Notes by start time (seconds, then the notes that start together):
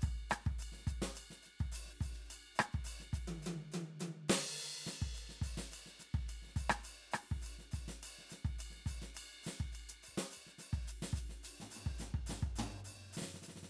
0.01 kick, hi-hat pedal, ride bell
0.30 cross-stick, hi-hat pedal, ride
0.45 kick, ride
0.59 hi-hat pedal, ride bell
0.72 snare
0.77 snare
0.80 snare
0.87 kick, hi-hat pedal, ride
1.01 snare, ride
1.15 hi-hat pedal, ride bell
1.30 snare
1.42 snare, hi-hat pedal, ride
1.59 kick, ride
1.72 hi-hat pedal, ride
1.86 snare
2.01 kick, hi-hat pedal, ride
2.15 ride
2.30 hi-hat pedal, ride bell
2.55 cross-stick, hi-hat pedal
2.59 ride bell
2.72 kick, ride
2.84 hi-hat pedal, ride bell
3.00 snare
3.13 kick, hi-hat pedal, ride
3.27 open hi-hat, high tom
3.42 hi-hat pedal, high tom
3.47 closed hi-hat
3.72 closed hi-hat, hi-hat pedal, high tom
4.00 closed hi-hat, hi-hat pedal, high tom
4.29 snare, hi-hat pedal, crash
4.57 hi-hat pedal
4.62 ride
4.85 snare, hi-hat pedal
5.02 kick
5.14 hi-hat pedal
5.18 ride bell
5.29 snare
5.41 kick, hi-hat pedal, ride
5.57 snare, ride
5.71 hi-hat pedal, ride bell
5.86 snare
5.99 snare, hi-hat pedal, ride
6.07 snare
6.13 kick, ride
6.28 hi-hat pedal, ride bell
6.42 snare
6.47 snare
6.56 kick, hi-hat pedal, ride
6.70 cross-stick, ride
6.83 hi-hat pedal, ride bell
7.12 cross-stick, hi-hat pedal, ride
7.29 kick, ride
7.34 snare
7.42 hi-hat pedal
7.46 ride bell
7.59 snare
7.71 kick, hi-hat pedal
7.75 ride
7.88 snare, ride
8.02 hi-hat pedal, ride bell
8.18 snare
8.30 snare, hi-hat pedal, ride
8.45 kick, ride
8.59 hi-hat pedal, ride bell
8.70 snare
8.75 snare
8.78 snare
8.86 kick, hi-hat pedal, ride
9.01 snare, ride
9.14 hi-hat pedal, ride bell
9.43 snare, hi-hat pedal, ride
9.59 kick, ride
9.72 hi-hat pedal, ride bell
9.89 closed hi-hat
10.03 hi-hat pedal, ride bell
10.08 kick
10.16 snare, ride
10.31 hi-hat pedal, ride bell
10.37 kick
10.47 snare
10.58 snare, hi-hat pedal, ride
10.73 kick, ride
10.82 kick
10.87 hi-hat pedal, ride
11.02 snare
11.13 kick, hi-hat pedal
11.17 ride
11.29 snare
11.43 hi-hat pedal, ride
11.60 snare, floor tom
11.71 hi-hat pedal
11.75 floor tom
11.86 kick
11.98 snare, floor tom, hi-hat pedal
12.14 kick
12.26 snare, floor tom, hi-hat pedal
12.42 kick
12.56 floor tom, hi-hat pedal
12.84 hi-hat pedal
13.13 hi-hat pedal
13.17 snare
13.22 snare
13.27 snare
13.34 snare
13.42 snare, hi-hat pedal
13.48 snare
13.56 snare
13.63 snare